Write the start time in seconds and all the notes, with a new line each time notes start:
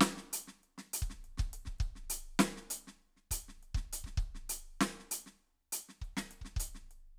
0.01 snare
0.18 snare
0.33 closed hi-hat
0.48 snare
0.64 closed hi-hat
0.78 snare
0.94 closed hi-hat
1.02 kick
1.10 snare
1.24 closed hi-hat
1.38 kick, snare
1.53 closed hi-hat
1.65 kick, snare
1.79 kick, closed hi-hat
1.96 snare
2.03 snare
2.10 closed hi-hat
2.39 snare
2.57 snare
2.71 closed hi-hat
2.88 snare
3.02 closed hi-hat
3.17 snare
3.31 closed hi-hat, kick
3.49 snare
3.63 closed hi-hat
3.75 kick, snare
3.93 closed hi-hat
4.04 kick, snare
4.18 kick
4.23 closed hi-hat
4.35 snare
4.50 closed hi-hat
4.81 snare
5.00 snare
5.11 closed hi-hat
5.26 snare
5.73 closed hi-hat
5.89 snare
6.02 kick, closed hi-hat
6.17 snare
6.31 closed hi-hat
6.42 kick, snare
6.57 closed hi-hat, kick
6.75 snare
6.91 closed hi-hat